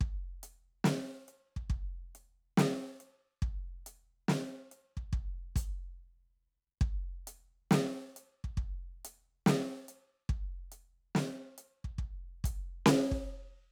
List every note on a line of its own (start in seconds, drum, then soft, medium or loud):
0.01 kick medium
0.01 snare soft
0.01 crash soft
0.43 closed hi-hat medium
0.85 snare loud
1.28 closed hi-hat soft
1.57 kick soft
1.70 kick medium
1.70 crash soft
2.15 closed hi-hat soft
2.58 snare loud
3.01 closed hi-hat soft
3.42 kick medium
3.87 closed hi-hat medium
4.29 snare loud
4.72 closed hi-hat soft
4.97 kick soft
5.13 kick medium
5.56 closed hi-hat medium
5.56 kick medium
6.81 kick medium
7.28 closed hi-hat medium
7.71 snare loud
8.17 closed hi-hat medium
8.44 kick soft
8.58 kick medium
9.05 closed hi-hat medium
9.47 snare loud
9.89 closed hi-hat medium
10.29 kick medium
10.72 closed hi-hat medium
11.15 snare loud
11.58 closed hi-hat medium
11.85 kick soft
11.99 kick medium
12.44 kick medium
12.44 closed hi-hat medium
12.86 snare loud
13.12 kick medium